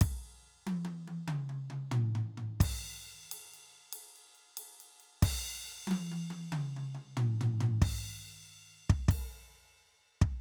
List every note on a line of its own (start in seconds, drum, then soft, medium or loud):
0.01 kick loud
0.01 ride loud
0.67 high tom loud
0.85 high tom loud
1.08 high tom medium
1.28 mid tom loud
1.49 mid tom medium
1.70 mid tom medium
1.91 floor tom loud
2.15 floor tom medium
2.38 floor tom medium
2.60 kick loud
2.60 ride loud
2.60 crash loud
3.32 ride loud
3.54 ride medium
3.71 ride soft
3.93 ride loud
4.16 ride soft
4.35 ride soft
4.57 ride loud
4.80 ride medium
5.00 ride soft
5.22 kick loud
5.22 ride loud
5.22 crash loud
5.87 high tom loud
5.91 high tom loud
6.12 high tom medium
6.30 high tom medium
6.52 mid tom loud
6.76 mid tom medium
6.95 mid tom medium
7.17 floor tom loud
7.41 floor tom loud
7.61 floor tom loud
7.82 kick loud
7.82 crash medium
8.90 kick loud
9.08 kick loud
9.08 crash loud
10.21 kick loud